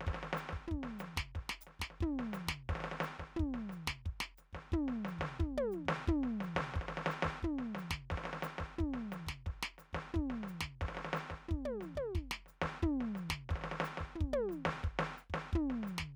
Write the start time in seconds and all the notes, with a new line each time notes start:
0.01 snare
0.07 kick, snare
0.14 snare
0.23 snare
0.33 snare, hi-hat pedal
0.49 kick, snare
0.67 floor tom
0.71 kick
0.83 snare
0.99 snare, hi-hat pedal
1.17 kick, snare
1.35 kick, snare
1.50 snare
1.61 hi-hat pedal
1.67 snare
1.80 kick, snare
1.90 snare
2.01 kick, floor tom
2.19 snare
2.34 snare, hi-hat pedal
2.48 kick, snare
2.69 kick, snare
2.76 snare
2.81 snare
2.84 snare
2.92 snare
3.01 snare, hi-hat pedal
3.19 kick, snare
3.36 kick, floor tom
3.54 snare
3.70 snare, hi-hat pedal
3.87 kick, snare
4.06 kick, snare
4.21 snare
4.38 snare, hi-hat pedal
4.53 kick, snare
4.72 kick, floor tom
4.88 snare
5.05 snare, hi-hat pedal
5.19 kick, snare
5.39 kick, floor tom
5.58 high tom
5.72 snare, hi-hat pedal
5.86 kick, snare
6.08 kick, floor tom
6.24 snare
6.41 snare, hi-hat pedal
6.55 kick, snare
6.74 kick, snare
6.81 snare
6.89 snare
6.97 snare
7.06 snare
7.11 hi-hat pedal
7.23 kick, snare
7.43 kick, floor tom
7.59 snare
7.75 snare, hi-hat pedal
7.91 kick, snare
8.10 kick, snare
8.18 snare
8.24 snare
8.26 snare
8.33 snare
8.43 snare, hi-hat pedal
8.59 kick, snare
8.78 kick, floor tom
8.94 snare
9.12 snare, hi-hat pedal
9.27 kick, snare
9.46 kick, snare
9.63 snare
9.78 snare, hi-hat pedal
9.93 kick, snare
10.13 kick, floor tom
10.30 snare
10.44 snare
10.48 hi-hat pedal
10.61 kick, snare
10.81 kick, snare
10.89 snare
10.95 snare
10.97 snare
11.05 snare
11.13 snare, hi-hat pedal
11.30 kick, snare
11.48 kick, floor tom
11.65 high tom
11.81 snare, hi-hat pedal
11.96 kick, high tom
12.15 kick, snare
12.31 snare
12.46 snare, hi-hat pedal
12.62 kick, snare
12.82 kick, floor tom
13.01 snare
13.15 snare, hi-hat pedal
13.30 kick, snare
13.49 kick, snare
13.56 snare
13.62 snare
13.64 snare
13.72 snare
13.80 snare
13.85 hi-hat pedal
13.98 kick, snare
14.15 floor tom
14.21 kick
14.33 high tom
14.49 snare, hi-hat pedal
14.65 kick, snare
14.84 kick, snare
14.99 snare
15.18 hi-hat pedal
15.30 kick
15.34 snare
15.53 kick, floor tom
15.70 snare
15.83 snare, hi-hat pedal
15.98 kick, snare